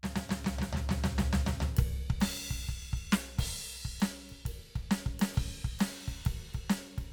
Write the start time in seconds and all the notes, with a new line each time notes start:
0.01 snare, floor tom
0.16 snare, floor tom
0.29 snare, floor tom
0.44 snare, floor tom
0.58 snare, floor tom
0.73 snare, floor tom
0.89 snare, floor tom
1.04 snare, floor tom
1.18 snare, floor tom
1.33 snare, floor tom
1.46 snare, floor tom
1.60 snare, floor tom
1.74 kick, ride
1.78 kick
2.10 kick
2.20 snare, crash
2.51 kick, snare
2.62 snare
2.67 kick, snare, ride bell
2.93 kick
2.97 ride
3.12 snare, ride
3.37 kick, snare, crash
3.47 snare
3.51 snare
3.55 snare
3.85 kick
4.00 snare, ride bell
4.29 kick, ride
4.42 kick, snare
4.46 ride
4.75 kick, ride, floor tom
4.91 snare, ride
5.06 kick
5.19 snare, ride
5.34 kick, crash
5.64 kick
5.79 snare, crash
6.08 kick, snare, ride bell
6.18 snare
6.24 kick, snare, ride
6.27 snare
6.30 snare
6.54 kick, ride
6.70 snare, ride
6.98 kick, snare, ride
7.09 snare